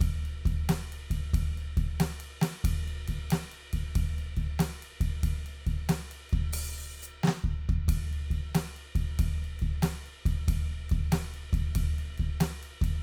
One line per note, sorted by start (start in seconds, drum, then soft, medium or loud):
0.01 kick loud
0.01 ride loud
0.26 ride soft
0.46 kick loud
0.46 ride medium
0.69 snare loud
0.69 ride loud
0.93 ride medium
1.11 kick loud
1.11 ride medium
1.34 kick loud
1.34 ride loud
1.58 ride soft
1.77 kick loud
1.77 ride medium
2.00 snare loud
2.00 ride loud
2.20 ride medium
2.42 snare loud
2.42 ride loud
2.64 kick loud
2.64 ride loud
2.88 ride soft
3.08 kick medium
3.08 ride medium
3.31 snare loud
3.31 ride loud
3.52 ride medium
3.73 kick loud
3.73 ride medium
3.96 kick loud
3.96 ride loud
4.19 ride soft
4.37 kick loud
4.37 ride soft
4.60 snare loud
4.60 ride loud
4.83 ride medium
5.01 kick loud
5.01 ride medium
5.24 kick loud
5.24 ride loud
5.46 ride medium
5.67 kick loud
5.67 ride medium
5.89 snare loud
5.89 ride loud
6.12 ride medium
6.30 kick loud
6.30 ride soft
6.53 open hi-hat loud
6.53 ride loud
7.02 hi-hat pedal loud
7.24 snare loud
7.28 snare loud
7.44 kick loud
7.69 kick loud
7.88 kick loud
7.88 ride loud
8.13 ride soft
8.31 kick medium
8.31 ride medium
8.55 snare loud
8.55 ride loud
8.77 ride soft
8.96 kick loud
8.96 ride medium
9.19 kick loud
9.19 ride loud
9.44 ride soft
9.60 kick loud
9.60 ride soft
9.83 snare loud
9.83 ride loud
10.06 ride soft
10.26 kick loud
10.26 ride medium
10.48 kick loud
10.48 ride loud
10.90 kick loud
10.90 ride medium
11.12 snare loud
11.12 ride loud
11.34 ride soft
11.53 kick loud
11.53 ride medium
11.75 kick loud
11.75 ride loud
11.99 ride soft
12.18 kick loud
12.18 ride soft
12.41 snare loud
12.41 ride loud
12.63 ride medium
12.82 kick loud
12.82 ride medium